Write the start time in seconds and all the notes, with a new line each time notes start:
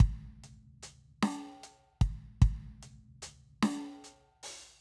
0.01 closed hi-hat, kick, hi-hat pedal
0.45 closed hi-hat
0.83 closed hi-hat
1.24 closed hi-hat, snare
1.64 closed hi-hat
2.02 kick, closed hi-hat
2.43 closed hi-hat, kick
2.83 closed hi-hat
3.23 closed hi-hat
3.64 snare, closed hi-hat
4.05 closed hi-hat
4.44 open hi-hat